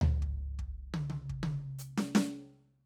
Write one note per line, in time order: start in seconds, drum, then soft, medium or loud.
0.01 floor tom loud
0.22 kick soft
0.59 kick soft
0.94 high tom loud
1.10 high tom medium
1.29 kick soft
1.43 high tom loud
1.79 hi-hat pedal medium
1.98 snare medium
2.15 snare loud